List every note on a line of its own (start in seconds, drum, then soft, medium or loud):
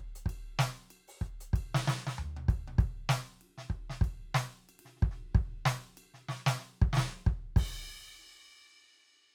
0.16 closed hi-hat medium
0.27 kick medium
0.27 ride bell medium
0.60 snare loud
0.91 ride bell medium
1.09 open hi-hat medium
1.22 kick medium
1.26 hi-hat pedal soft
1.41 closed hi-hat medium
1.54 kick loud
1.54 ride bell medium
1.75 snare loud
1.88 snare loud
2.08 snare medium
2.08 hi-hat pedal soft
2.19 floor tom loud
2.37 high tom medium
2.49 kick loud
2.49 ride bell soft
2.68 high tom medium
2.79 kick loud
2.79 ride bell soft
3.10 snare loud
3.42 ride soft
3.58 snare medium
3.71 kick medium
3.90 snare medium
4.02 kick loud
4.02 ride bell soft
4.35 snare loud
4.35 hi-hat pedal soft
4.70 ride bell soft
4.80 ride medium
4.86 snare soft
4.97 snare soft
5.03 kick loud
5.11 snare soft
5.35 kick loud
5.35 ride bell soft
5.66 snare loud
5.66 hi-hat pedal medium
5.98 ride bell medium
6.15 snare soft
6.29 snare medium
6.29 hi-hat pedal soft
6.47 snare loud
6.59 snare soft
6.82 kick loud
6.94 snare loud
6.98 snare loud
7.27 kick loud
7.57 open hi-hat medium
7.57 kick loud
7.57 crash loud
7.66 hi-hat pedal soft